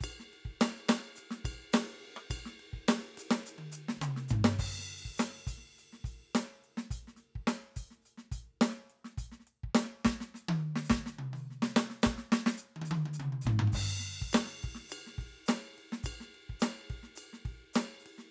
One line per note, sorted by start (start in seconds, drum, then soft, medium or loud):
0.01 kick soft
0.01 hi-hat pedal medium
0.01 ride bell loud
0.07 kick soft
0.20 snare soft
0.34 ride soft
0.46 kick soft
0.61 snare loud
0.61 hi-hat pedal medium
0.61 ride bell loud
0.89 snare loud
0.89 ride bell loud
0.98 snare soft
1.16 hi-hat pedal medium
1.16 ride medium
1.31 snare medium
1.45 kick soft
1.45 ride bell loud
1.51 kick soft
1.54 kick soft
1.73 snare loud
1.73 hi-hat pedal medium
1.73 ride loud
2.04 ride soft
2.17 cross-stick medium
2.30 kick soft
2.30 hi-hat pedal medium
2.30 ride bell loud
2.37 kick soft
2.40 kick soft
2.46 snare soft
2.60 ride medium
2.74 kick soft
2.89 snare loud
2.89 hi-hat pedal medium
2.89 ride loud
2.98 snare soft
3.18 hi-hat pedal medium
3.18 ride medium
3.31 snare loud
3.44 hi-hat pedal medium
3.44 ride soft
3.59 high tom medium
3.72 hi-hat pedal loud
3.89 snare medium
3.98 kick soft
4.02 hi-hat pedal loud
4.02 mid tom loud
4.17 snare soft
4.29 kick soft
4.29 floor tom loud
4.29 hi-hat pedal medium
4.40 kick soft
4.45 snare loud
4.59 kick medium
4.59 hi-hat pedal medium
4.59 crash loud
4.69 kick soft
4.79 snare soft
5.06 kick soft
5.18 closed hi-hat loud
5.18 snare loud
5.18 hi-hat pedal medium
5.30 snare soft
5.47 closed hi-hat medium
5.47 kick soft
5.53 kick soft
5.58 snare soft
5.79 closed hi-hat soft
5.93 snare soft
6.05 closed hi-hat medium
6.05 kick soft
6.35 closed hi-hat loud
6.35 snare loud
6.46 snare soft
6.64 closed hi-hat soft
6.78 snare medium
6.91 closed hi-hat medium
6.91 kick soft
6.97 kick soft
7.08 snare soft
7.17 closed hi-hat soft
7.17 snare soft
7.36 kick soft
7.48 closed hi-hat medium
7.48 snare loud
7.77 open hi-hat medium
7.77 kick soft
7.91 snare soft
8.02 closed hi-hat soft
8.02 hi-hat pedal soft
8.18 snare soft
8.32 closed hi-hat medium
8.32 kick soft
8.38 kick soft
8.62 closed hi-hat loud
8.62 snare loud
8.70 snare soft
8.90 closed hi-hat soft
9.05 snare soft
9.18 closed hi-hat medium
9.18 kick soft
9.24 kick soft
9.32 snare soft
9.40 snare soft
9.47 closed hi-hat soft
9.64 kick soft
9.75 closed hi-hat loud
9.75 snare loud
9.85 snare soft
10.05 kick soft
10.05 snare loud
10.21 snare medium
10.35 snare soft
10.35 hi-hat pedal medium
10.49 high tom loud
10.60 cross-stick soft
10.76 snare medium
10.85 hi-hat pedal medium
10.90 kick medium
10.90 snare loud
10.98 kick soft
11.01 kick soft
11.06 snare medium
11.12 kick soft
11.12 hi-hat pedal soft
11.19 mid tom loud
11.34 hi-hat pedal soft
11.34 open hi-hat soft
11.34 high tom medium
11.51 snare soft
11.63 snare loud
11.77 snare loud
11.90 snare soft
12.03 snare loud
12.03 hi-hat pedal medium
12.07 kick soft
12.16 kick soft
12.16 snare soft
12.33 snare loud
12.47 snare loud
12.58 hi-hat pedal medium
12.76 high tom medium
12.82 hi-hat pedal medium
12.82 high tom loud
12.91 high tom loud
13.06 high tom medium
13.14 hi-hat pedal medium
13.20 mid tom loud
13.33 mid tom medium
13.42 hi-hat pedal medium
13.46 kick soft
13.46 floor tom loud
13.60 floor tom loud
13.68 floor tom soft
13.73 kick medium
13.73 hi-hat pedal medium
13.73 crash loud
14.00 snare soft
14.22 kick soft
14.31 kick soft
14.31 ride bell loud
14.35 snare loud
14.35 hi-hat pedal medium
14.46 snare soft
14.64 kick soft
14.64 ride medium
14.70 kick soft
14.75 snare soft
14.90 hi-hat pedal medium
14.90 ride bell loud
15.07 snare soft
15.19 kick soft
15.19 ride soft
15.25 kick soft
15.47 snare loud
15.47 hi-hat pedal medium
15.47 ride bell loud
15.78 ride medium
15.93 snare medium
16.04 kick soft
16.04 hi-hat pedal medium
16.04 ride bell loud
16.10 kick soft
16.13 kick soft
16.21 snare soft
16.35 ride soft
16.50 kick soft
16.60 snare loud
16.60 hi-hat pedal medium
16.60 ride bell loud
16.74 snare soft
16.90 kick soft
16.90 ride medium
17.03 snare soft
17.16 hi-hat pedal medium
17.16 ride bell loud
17.34 snare soft
17.46 kick soft
17.46 ride soft
17.51 kick soft
17.74 snare loud
17.74 hi-hat pedal medium
17.74 ride bell loud
18.00 hi-hat pedal soft
18.06 ride medium
18.19 snare soft